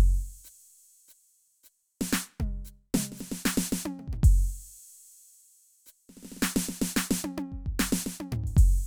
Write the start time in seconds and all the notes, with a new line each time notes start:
0.01 floor tom, hi-hat pedal
0.44 hi-hat pedal
1.08 hi-hat pedal
1.64 hi-hat pedal
2.01 snare
2.13 snare, hi-hat pedal
2.40 kick, mid tom
2.65 hi-hat pedal
2.94 snare, mid tom
3.12 snare
3.17 hi-hat pedal
3.21 snare
3.32 snare
3.46 snare
3.58 snare
3.70 snare, hi-hat pedal
3.86 high tom
3.99 mid tom
4.08 kick
4.13 floor tom
4.24 kick, crash
5.86 hi-hat pedal
6.09 snare
6.17 snare
6.23 snare
6.25 snare
6.32 snare
6.37 snare
6.43 snare
6.56 snare
6.69 snare
6.82 snare
6.97 snare
7.11 snare
7.24 hi-hat pedal, high tom
7.38 high tom
7.52 kick
7.66 kick
7.72 kick
7.80 snare
7.93 snare
8.06 snare
8.20 high tom
8.32 floor tom
8.44 kick, crash
8.57 kick, crash